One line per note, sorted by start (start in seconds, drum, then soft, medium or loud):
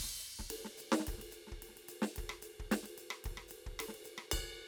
0.01 kick soft
0.01 snare soft
0.07 kick soft
0.19 hi-hat pedal medium
0.39 kick soft
0.39 snare soft
0.47 kick soft
0.47 ride loud
0.65 snare soft
0.77 hi-hat pedal medium
0.77 ride medium
0.92 snare medium
0.99 snare soft
1.07 kick soft
1.07 ride medium
1.14 kick soft
1.14 snare soft
1.21 ride medium
1.31 hi-hat pedal soft
1.31 ride soft
1.47 snare soft
1.51 kick soft
1.62 ride medium
1.69 snare soft
1.74 snare soft
1.74 ride soft
1.88 hi-hat pedal medium
1.88 ride medium
2.02 snare medium
2.16 kick soft
2.16 ride medium
2.29 cross-stick medium
2.42 hi-hat pedal medium
2.42 ride medium
2.59 kick soft
2.71 snare medium
2.71 ride medium
2.83 snare soft
2.83 ride medium
2.97 hi-hat pedal soft
2.97 ride medium
3.10 cross-stick medium
3.24 kick soft
3.24 ride medium
3.32 kick soft
3.37 cross-stick medium
3.48 hi-hat pedal soft
3.48 ride medium
3.66 kick soft
3.79 cross-stick medium
3.79 ride medium
3.88 snare soft
3.94 ride soft
4.04 hi-hat pedal soft
4.04 ride soft
4.18 cross-stick medium
4.31 kick medium
4.31 ride bell loud
4.40 kick soft
4.44 kick soft